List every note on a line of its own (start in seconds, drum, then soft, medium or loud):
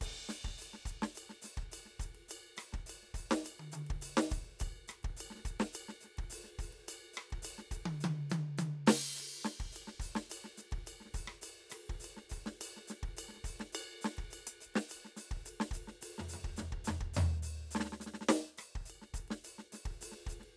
0.01 kick soft
0.01 hi-hat pedal medium
0.01 ride medium
0.29 snare soft
0.29 hi-hat pedal medium
0.44 kick soft
0.44 snare soft
0.58 hi-hat pedal medium
0.62 ride bell medium
0.73 snare soft
0.85 kick soft
0.85 hi-hat pedal medium
0.90 ride soft
1.02 snare medium
1.02 ride soft
1.15 hi-hat pedal medium
1.15 ride bell medium
1.29 snare soft
1.42 snare soft
1.42 hi-hat pedal medium
1.42 ride soft
1.57 kick soft
1.57 ride soft
1.72 hi-hat pedal medium
1.72 ride bell medium
1.85 snare soft
2.00 kick soft
2.00 hi-hat pedal medium
2.00 ride soft
2.15 ride soft
2.28 hi-hat pedal medium
2.28 ride bell medium
2.57 cross-stick medium
2.57 hi-hat pedal medium
2.73 kick soft
2.73 snare soft
2.86 hi-hat pedal medium
2.86 ride bell medium
3.02 snare soft
3.14 kick soft
3.14 hi-hat pedal medium
3.14 ride soft
3.30 snare medium
3.30 ride soft
3.44 hi-hat pedal medium
3.44 ride bell medium
3.60 high tom medium
3.72 hi-hat pedal medium
3.72 high tom medium
3.72 ride soft
3.87 kick medium
3.87 ride soft
4.01 hi-hat pedal medium
4.01 ride bell medium
4.17 snare loud
4.30 kick medium
4.30 hi-hat pedal medium
4.30 ride soft
4.45 ride soft
4.59 kick medium
4.59 hi-hat pedal medium
4.59 ride bell medium
4.88 cross-stick medium
4.88 hi-hat pedal medium
4.88 ride soft
5.03 kick medium
5.03 ride soft
5.17 hi-hat pedal medium
5.17 ride bell medium
5.30 snare soft
5.35 snare soft
5.38 snare soft
5.45 kick soft
5.45 hi-hat pedal medium
5.45 ride soft
5.60 snare medium
5.60 ride soft
5.73 hi-hat pedal medium
5.73 ride bell medium
5.88 snare soft
6.01 snare soft
6.01 hi-hat pedal medium
6.01 ride soft
6.17 kick soft
6.17 ride soft
6.30 hi-hat pedal medium
6.30 ride medium
6.44 snare soft
6.59 kick soft
6.59 hi-hat pedal medium
6.59 ride soft
6.73 ride soft
6.88 hi-hat pedal medium
6.88 ride bell medium
7.13 cross-stick medium
7.13 hi-hat pedal medium
7.17 ride bell soft
7.30 kick soft
7.30 ride soft
7.42 hi-hat pedal medium
7.42 ride bell medium
7.58 snare soft
7.71 kick soft
7.71 hi-hat pedal medium
7.71 ride medium
7.86 open hi-hat soft
7.86 high tom loud
8.00 hi-hat pedal medium
8.00 high tom loud
8.06 closed hi-hat soft
8.30 closed hi-hat soft
8.30 hi-hat pedal medium
8.30 high tom loud
8.58 closed hi-hat soft
8.58 hi-hat pedal medium
8.58 high tom loud
8.87 snare loud
8.87 hi-hat pedal medium
8.87 crash loud
9.16 hi-hat pedal medium
9.20 ride soft
9.43 snare medium
9.43 hi-hat pedal medium
9.60 kick soft
9.72 hi-hat pedal medium
9.76 ride bell medium
9.87 snare soft
10.00 kick soft
10.00 hi-hat pedal medium
10.00 ride soft
10.15 snare medium
10.15 ride soft
10.30 hi-hat pedal medium
10.30 ride bell medium
10.44 snare soft
10.57 snare soft
10.57 hi-hat pedal medium
10.57 ride soft
10.65 snare soft
10.71 kick medium
10.71 ride soft
10.86 hi-hat pedal medium
10.86 ride bell medium
11.00 snare soft
11.05 snare soft
11.14 kick soft
11.14 hi-hat pedal medium
11.14 ride soft
11.28 cross-stick medium
11.28 ride soft
11.41 hi-hat pedal medium
11.41 ride bell medium
11.70 cross-stick medium
11.70 hi-hat pedal medium
11.70 ride medium
11.87 kick soft
11.87 ride soft
11.92 snare soft
12.00 hi-hat pedal medium
12.04 ride bell medium
12.17 snare soft
12.29 kick soft
12.29 hi-hat pedal medium
12.33 ride soft
12.46 snare soft
12.46 ride soft
12.61 hi-hat pedal medium
12.61 ride bell medium
12.77 snare soft
12.88 snare soft
12.88 hi-hat pedal medium
12.88 ride soft
13.03 kick soft
13.03 ride soft
13.17 hi-hat pedal medium
13.17 ride bell medium
13.28 snare soft
13.33 snare soft
13.36 snare soft
13.44 kick soft
13.44 hi-hat pedal medium
13.44 ride soft
13.60 snare soft
13.60 ride soft
13.72 hi-hat pedal medium
13.72 ride bell loud
14.01 snare medium
14.01 hi-hat pedal medium
14.01 ride soft
14.17 kick soft
14.17 ride soft
14.30 hi-hat pedal soft
14.30 ride bell medium
14.47 closed hi-hat loud
14.61 hi-hat pedal medium
14.61 ride bell soft
14.66 kick soft
14.74 snare medium
14.74 ride soft
14.89 hi-hat pedal medium
14.89 ride bell medium
14.95 kick soft
15.05 snare soft
15.16 snare soft
15.16 hi-hat pedal medium
15.16 ride soft
15.31 kick medium
15.31 ride soft
15.40 kick soft
15.45 hi-hat pedal medium
15.45 ride medium
15.60 snare medium
15.71 kick soft
15.71 hi-hat pedal medium
15.75 ride medium
15.87 snare soft
16.01 hi-hat pedal medium
16.01 ride medium
16.18 snare soft
16.18 floor tom medium
16.29 hi-hat pedal medium
16.34 floor tom soft
16.44 kick soft
16.56 snare soft
16.56 floor tom medium
16.56 hi-hat pedal medium
16.72 kick soft
16.84 snare medium
16.84 floor tom medium
16.84 hi-hat pedal medium
17.01 kick medium
17.14 floor tom loud
17.14 hi-hat pedal medium
17.42 hi-hat pedal medium
17.71 hi-hat pedal medium
17.75 snare medium
17.80 snare medium
17.85 snare soft
17.92 snare soft
18.00 snare soft
18.00 hi-hat pedal medium
18.06 snare soft
18.14 snare soft
18.21 snare soft
18.29 snare loud
18.29 hi-hat pedal medium
18.58 cross-stick medium
18.58 hi-hat pedal medium
18.75 kick soft
18.85 hi-hat pedal medium
18.90 ride bell soft
19.02 snare soft
19.14 kick soft
19.14 hi-hat pedal medium
19.14 ride soft
19.28 snare medium
19.28 ride soft
19.44 hi-hat pedal medium
19.44 ride bell soft
19.58 snare soft
19.72 snare soft
19.72 hi-hat pedal medium
19.72 ride soft
19.85 kick soft
19.85 ride soft
20.01 hi-hat pedal medium
20.01 ride medium
20.12 snare soft
20.26 kick soft
20.26 hi-hat pedal medium
20.26 ride soft
20.40 snare soft
20.40 ride soft